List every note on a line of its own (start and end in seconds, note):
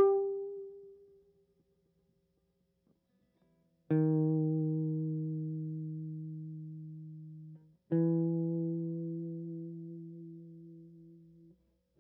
0.00 1.25 G4
3.93 7.60 D#3
7.94 11.27 E3